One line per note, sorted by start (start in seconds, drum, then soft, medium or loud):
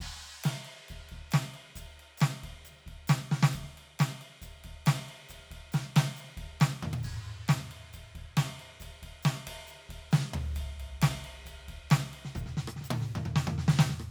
0.00 kick soft
0.00 crash medium
0.06 kick soft
0.10 kick soft
0.44 snare loud
0.44 ride loud
0.44 percussion soft
0.65 ride soft
0.76 snare soft
0.88 kick soft
0.88 ride medium
0.88 percussion soft
1.09 kick soft
1.09 ride soft
1.31 snare loud
1.31 ride loud
1.31 percussion medium
1.54 ride soft
1.70 snare soft
1.75 kick soft
1.75 ride medium
1.75 percussion medium
1.81 kick soft
1.99 ride soft
2.17 snare loud
2.17 ride medium
2.17 percussion medium
2.43 kick soft
2.43 ride medium
2.49 kick soft
2.65 ride soft
2.65 percussion medium
2.70 snare soft
2.76 snare soft
2.80 snare soft
2.86 kick soft
2.86 ride soft
2.92 kick soft
3.07 snare loud
3.07 ride medium
3.07 percussion medium
3.31 snare medium
3.43 snare loud
3.53 kick soft
3.53 ride medium
3.53 percussion soft
3.60 kick soft
3.60 snare soft
3.67 snare soft
3.73 snare soft
3.77 ride medium
3.99 snare loud
3.99 ride medium
3.99 percussion medium
4.21 ride medium
4.29 snare soft
4.36 snare soft
4.42 kick soft
4.42 ride medium
4.42 percussion medium
4.55 snare soft
4.64 kick soft
4.64 ride medium
4.70 kick soft
4.86 snare loud
4.86 ride loud
4.86 percussion medium
5.08 ride soft
5.22 snare soft
5.29 kick soft
5.29 ride medium
5.29 percussion medium
5.35 snare soft
5.40 snare soft
5.44 snare soft
5.47 kick soft
5.47 snare soft
5.51 ride medium
5.56 kick soft
5.72 snare loud
5.72 ride medium
5.72 percussion medium
5.96 snare loud
5.96 ride loud
6.17 ride soft
6.17 percussion medium
6.24 snare soft
6.29 snare soft
6.35 kick soft
6.35 snare soft
6.35 ride medium
6.43 kick soft
6.60 snare loud
6.60 ride medium
6.60 percussion medium
6.83 mid tom loud
6.93 high tom loud
7.03 kick soft
7.03 percussion soft
7.03 crash medium
7.10 kick soft
7.25 ride soft
7.48 snare loud
7.48 ride medium
7.48 percussion medium
7.71 ride medium
7.83 snare soft
7.93 kick soft
7.93 ride medium
7.93 percussion soft
8.15 kick soft
8.15 ride soft
8.37 snare loud
8.37 ride loud
8.37 percussion soft
8.59 ride soft
8.80 kick soft
8.80 ride medium
8.80 percussion soft
8.85 kick soft
9.02 kick soft
9.02 ride medium
9.23 snare loud
9.23 ride loud
9.23 percussion medium
9.47 kick soft
9.47 ride loud
9.67 ride soft
9.67 percussion soft
9.71 snare soft
9.76 snare soft
9.79 snare soft
9.82 snare soft
9.85 snare soft
9.89 kick soft
9.89 ride medium
10.11 snare loud
10.11 ride medium
10.11 percussion soft
10.33 floor tom loud
10.55 kick soft
10.55 ride medium
10.55 percussion soft
10.80 ride medium
11.02 snare loud
11.02 ride loud
11.02 percussion soft
11.24 ride medium
11.45 kick soft
11.45 ride medium
11.45 percussion soft
11.59 snare soft
11.68 kick soft
11.68 ride medium
11.74 kick soft
11.90 snare loud
11.90 ride medium
11.90 percussion soft
12.13 ride medium
12.25 snare medium
12.35 kick soft
12.35 mid tom medium
12.35 percussion soft
12.43 kick soft
12.43 snare soft
12.57 snare medium
12.67 cross-stick medium
12.76 snare soft
12.81 snare soft
12.81 percussion medium
12.90 high tom loud
13.01 snare soft
13.15 mid tom loud
13.25 mid tom medium
13.36 snare medium
13.47 mid tom loud
13.58 snare medium
13.79 snare loud
13.89 snare medium
14.00 cross-stick medium